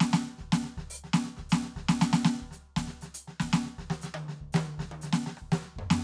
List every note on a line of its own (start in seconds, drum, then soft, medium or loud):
0.01 snare loud
0.01 hi-hat pedal medium
0.14 snare loud
0.21 snare soft
0.26 snare soft
0.39 kick soft
0.39 snare soft
0.53 snare loud
0.53 hi-hat pedal medium
0.65 snare soft
0.78 kick soft
0.78 snare soft
0.83 kick soft
0.91 open hi-hat loud
0.97 hi-hat pedal medium
1.04 snare soft
1.14 snare loud
1.25 snare soft
1.37 kick soft
1.37 snare soft
1.48 kick soft
1.48 hi-hat pedal medium
1.53 snare loud
1.64 snare soft
1.77 kick soft
1.77 snare medium
1.82 kick soft
1.89 snare loud
2.01 snare loud
2.01 hi-hat pedal medium
2.14 snare loud
2.25 snare loud
2.39 kick soft
2.39 snare soft
2.52 snare soft
2.52 hi-hat pedal medium
2.67 snare soft
2.77 kick soft
2.77 snare loud
2.88 snare soft
3.02 snare medium
3.02 hi-hat pedal medium
3.15 closed hi-hat loud
3.28 snare soft
3.40 kick soft
3.40 snare loud
3.54 snare loud
3.54 hi-hat pedal medium
3.65 snare soft
3.79 kick soft
3.79 snare medium
3.91 snare medium
4.02 snare medium
4.02 hi-hat pedal medium
4.15 high tom loud
4.29 snare medium
4.41 kick soft
4.53 snare loud
4.53 hi-hat pedal medium
4.53 high tom loud
4.79 kick soft
4.79 snare medium
4.92 high tom loud
5.02 snare medium
5.02 hi-hat pedal medium
5.13 snare loud
5.25 snare medium
5.25 hi-hat pedal soft
5.38 cross-stick medium
5.42 kick soft
5.52 snare loud
5.52 hi-hat pedal soft
5.63 snare soft
5.77 kick soft
5.77 floor tom medium
5.83 kick soft
5.91 snare loud
5.98 snare soft